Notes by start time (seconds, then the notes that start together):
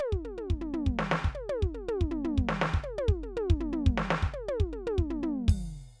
0.00 high tom
0.12 kick
0.24 mid tom
0.37 mid tom
0.50 kick
0.60 floor tom
0.73 floor tom
0.86 kick
0.99 snare
1.11 snare
1.24 kick
1.34 high tom
1.49 high tom
1.62 kick
1.74 mid tom
1.88 mid tom
2.01 kick
2.10 floor tom
2.24 floor tom
2.38 kick
2.49 snare
2.61 snare
2.74 kick
2.83 high tom
2.98 high tom
3.08 kick
3.23 mid tom
3.36 mid tom
3.50 kick
3.60 floor tom
3.72 floor tom
3.86 kick
3.98 snare
4.10 snare
4.22 kick
4.33 high tom
4.48 high tom
4.60 kick
4.72 mid tom
4.86 mid tom
4.98 kick
5.09 floor tom
5.22 floor tom
5.48 kick, ride